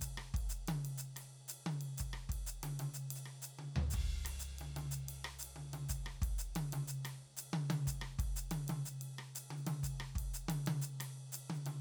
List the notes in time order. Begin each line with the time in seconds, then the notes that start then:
0.01 kick, hi-hat pedal, ride
0.18 cross-stick
0.34 kick, ride
0.49 hi-hat pedal
0.68 high tom, ride
0.85 ride
0.98 hi-hat pedal
1.16 cross-stick, hi-hat pedal, ride
1.48 hi-hat pedal, ride
1.66 hi-hat pedal, high tom
1.81 ride
1.98 kick, hi-hat pedal, ride
2.13 cross-stick
2.29 kick, ride
2.47 hi-hat pedal
2.63 high tom, ride
2.79 high tom, ride
2.94 hi-hat pedal
3.11 ride
3.15 hi-hat pedal
3.26 cross-stick
3.42 hi-hat pedal, ride
3.59 high tom
3.76 floor tom
3.90 kick, hi-hat pedal, crash
4.25 cross-stick, ride
4.39 hi-hat pedal
4.59 high tom, ride
4.76 high tom, ride
4.91 hi-hat pedal
5.09 hi-hat pedal, ride
5.24 cross-stick
5.39 hi-hat pedal
5.43 ride
5.56 high tom
5.73 high tom, ride
5.89 kick, hi-hat pedal, ride
6.06 cross-stick
6.22 kick, ride
6.38 hi-hat pedal
6.55 high tom, ride
6.72 high tom, ride
6.88 hi-hat pedal
7.05 cross-stick, ride
7.37 hi-hat pedal, ride
7.53 high tom
7.70 high tom, ride
7.87 kick, hi-hat pedal, ride
8.01 cross-stick
8.19 kick, ride
8.36 hi-hat pedal
8.51 high tom, ride
8.68 high tom, ride
8.85 hi-hat pedal
9.01 ride
9.18 cross-stick
9.35 hi-hat pedal, ride
9.51 high tom
9.57 hi-hat pedal
9.67 high tom, ride
9.83 kick, hi-hat pedal, ride
10.00 cross-stick
10.15 kick, ride
10.34 hi-hat pedal
10.48 high tom, ride
10.66 high tom, ride
10.82 hi-hat pedal
11.00 cross-stick, ride
11.32 hi-hat pedal, ride
11.50 high tom
11.54 hi-hat pedal
11.66 high tom, ride